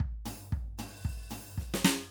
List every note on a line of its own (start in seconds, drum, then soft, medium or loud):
0.00 kick medium
0.25 open hi-hat medium
0.25 floor tom loud
0.52 kick medium
0.78 open hi-hat medium
0.78 floor tom loud
1.05 kick medium
1.29 open hi-hat medium
1.29 floor tom loud
1.57 kick medium
1.57 snare soft
1.74 snare loud
1.80 hi-hat pedal soft
1.85 snare loud